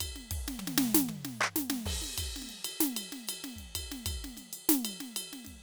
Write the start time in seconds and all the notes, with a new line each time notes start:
0.01 kick, ride bell
0.16 snare
0.31 kick, ride
0.38 kick
0.48 snare
0.60 high tom
0.68 snare
0.78 snare
0.95 snare
1.09 mid tom
1.25 snare
1.34 hi-hat pedal
1.41 percussion
1.56 snare
1.70 snare
1.85 kick, hi-hat pedal, crash
1.97 kick
2.02 snare
2.18 kick, ride bell
2.36 snare
2.42 snare
2.48 snare, ride
2.65 ride bell
2.81 snare
2.97 ride bell
3.13 snare
3.28 hi-hat pedal, ride bell
3.44 snare
3.56 kick, snare, ride
3.75 kick, ride bell
3.92 snare
4.06 kick, ride bell
4.12 kick
4.25 snare
4.37 snare, ride bell
4.53 ride bell
4.69 snare
4.85 ride bell
5.01 snare
5.17 hi-hat pedal, ride bell
5.33 snare
5.45 kick, snare, ride